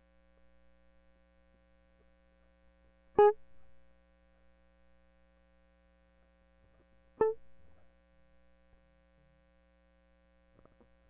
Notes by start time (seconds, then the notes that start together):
3.19 G#4
7.22 A4